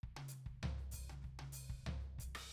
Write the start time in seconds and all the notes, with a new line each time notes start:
0.03 kick
0.16 high tom
0.28 snare, hi-hat pedal
0.46 kick
0.63 floor tom
0.77 snare
0.91 kick, snare, hi-hat pedal
1.09 high tom
1.21 kick, snare
1.39 high tom
1.52 snare, hi-hat pedal
1.69 kick
1.86 floor tom
1.99 snare
2.18 kick, hi-hat pedal
2.35 cross-stick, ride